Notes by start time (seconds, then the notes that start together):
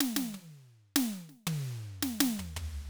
0.00 snare
0.16 snare
0.34 high tom
0.96 snare
1.29 snare
1.47 mid tom
2.02 snare
2.20 snare
2.39 floor tom
2.56 floor tom